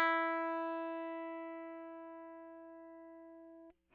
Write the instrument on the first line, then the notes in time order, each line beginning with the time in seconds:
electric guitar
0.00 E4